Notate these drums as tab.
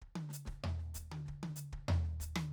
Hi-hat    |--p---p---p---p-|
Snare     |--oo-oo-o-oo-oor|
High tom  |-o-----o-o-----o|
Floor tom |----o-------o---|
Kick      |o--o--o-o--o--o-|